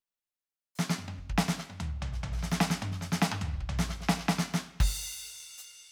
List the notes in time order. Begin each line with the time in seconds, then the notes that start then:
0.75 snare, hi-hat pedal
0.89 snare
0.98 high tom
1.08 high tom
1.18 kick
1.29 kick
1.38 snare
1.48 snare
1.70 high tom
1.80 mid tom
2.02 floor tom
2.12 snare
2.23 floor tom
2.32 snare
2.36 snare
2.40 snare
2.43 snare
2.52 snare
2.60 snare
2.70 snare
2.82 high tom
2.91 snare
3.01 snare
3.12 snare
3.22 snare
3.32 high tom
3.41 mid tom
3.54 kick
3.60 kick
3.69 floor tom
3.79 snare
3.89 snare
4.01 snare
4.09 snare
4.18 snare
4.28 snare
4.38 snare, hi-hat pedal
4.54 snare
4.80 kick, crash
5.58 hi-hat pedal